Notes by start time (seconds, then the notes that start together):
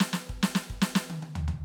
0.00 snare
0.13 snare
0.29 kick
0.43 snare
0.55 snare
0.70 kick
0.82 snare
0.95 snare
1.10 high tom
1.22 high tom
1.35 floor tom
1.48 floor tom